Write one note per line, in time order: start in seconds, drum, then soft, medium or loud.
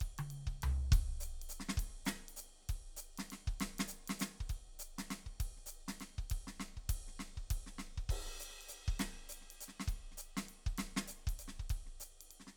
0.01 kick soft
0.01 ride soft
0.19 high tom medium
0.19 ride soft
0.31 ride soft
0.47 kick soft
0.63 floor tom loud
0.63 ride medium
0.92 kick medium
0.92 ride medium
1.21 hi-hat pedal medium
1.21 ride soft
1.42 ride soft
1.50 hi-hat pedal medium
1.50 ride soft
1.60 snare soft
1.69 snare medium
1.78 kick medium
1.78 ride medium
2.06 snare medium
2.06 hi-hat pedal medium
2.06 ride medium
2.29 ride soft
2.37 hi-hat pedal medium
2.37 ride soft
2.62 snare soft
2.69 kick soft
2.69 ride medium
2.97 hi-hat pedal medium
2.97 ride soft
3.18 snare medium
3.18 ride soft
3.31 snare soft
3.31 ride soft
3.48 kick medium
3.61 snare medium
3.61 ride medium
3.79 snare medium
3.79 ride medium
3.88 hi-hat pedal medium
4.08 snare medium
4.08 ride medium
4.20 snare medium
4.20 hi-hat pedal medium
4.20 ride medium
4.41 kick soft
4.50 kick soft
4.50 ride soft
4.80 hi-hat pedal medium
4.80 ride soft
4.99 snare medium
4.99 ride soft
5.11 snare medium
5.11 ride soft
5.26 kick soft
5.40 kick soft
5.40 ride medium
5.57 snare soft
5.67 hi-hat pedal medium
5.71 ride soft
5.88 snare medium
5.88 ride soft
6.00 snare soft
6.00 ride soft
6.19 kick soft
6.30 kick soft
6.30 ride medium
6.48 snare soft
6.60 snare medium
6.77 kick soft
6.90 kick medium
6.90 ride medium
7.08 snare soft
7.20 snare soft
7.38 kick soft
7.51 kick medium
7.51 ride medium
7.67 snare soft
7.79 snare soft
7.98 kick soft
8.10 kick medium
8.10 crash medium
8.27 snare soft
8.40 hi-hat pedal medium
8.40 ride soft
8.51 cross-stick soft
8.61 ride soft
8.69 hi-hat pedal medium
8.69 ride soft
8.88 kick medium
9.00 snare medium
9.00 ride medium
9.29 hi-hat pedal medium
9.29 ride soft
9.42 snare soft
9.51 ride soft
9.61 hi-hat pedal medium
9.61 ride soft
9.69 snare soft
9.80 snare medium
9.88 kick medium
9.88 ride soft
10.12 snare soft
10.18 hi-hat pedal medium
10.18 ride soft
10.37 snare medium
10.37 ride soft
10.49 ride soft
10.67 kick medium
10.78 snare medium
10.78 ride medium
10.97 snare medium
11.08 hi-hat pedal medium
11.08 ride soft
11.27 kick medium
11.27 ride medium
11.39 hi-hat pedal medium
11.39 ride soft
11.48 snare soft
11.60 kick soft
11.70 kick medium
11.70 ride medium
11.86 snare soft
12.00 hi-hat pedal medium
12.00 ride soft
12.21 ride soft
12.40 snare soft
12.47 snare soft